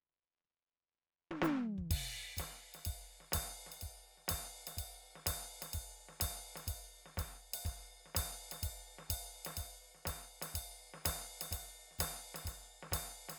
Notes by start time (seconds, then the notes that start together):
1.30 snare, floor tom
1.42 snare, floor tom, hi-hat pedal
1.78 kick
1.90 kick, crash, ride
2.37 kick, snare, hi-hat pedal, ride
2.74 snare, ride
2.85 kick, ride
3.20 snare
3.32 kick, snare, hi-hat pedal, ride
3.66 snare
3.71 ride
3.81 kick, ride
4.17 snare
4.28 kick, snare, hi-hat pedal, ride
4.67 snare, ride
4.76 kick, hi-hat pedal, ride
5.15 snare
5.26 kick, snare, hi-hat pedal, ride
5.62 snare, ride
5.73 kick, ride
6.08 snare
6.20 kick, snare, hi-hat pedal, ride
6.55 snare, ride
6.66 kick, hi-hat pedal, ride
7.06 snare
7.17 kick, snare, hi-hat pedal, ride
7.53 snare, ride
7.65 kick, snare, ride
8.06 snare
8.14 kick, snare, hi-hat pedal, ride
8.20 snare
8.51 snare, ride
8.63 kick, snare, ride
8.98 snare
9.10 kick, hi-hat pedal, ride
9.45 snare, ride
9.57 kick, ride
9.95 snare
10.05 kick, snare, hi-hat pedal, ride
10.42 snare, ride
10.54 kick, ride
10.94 snare
11.04 kick, snare, hi-hat pedal, ride
11.41 snare, ride
11.51 kick, snare, ride
11.91 snare
11.98 kick, snare, hi-hat pedal, ride
12.34 snare, ride
12.45 kick, snare, ride
12.83 snare
12.92 kick, snare, hi-hat pedal, ride
13.29 snare, ride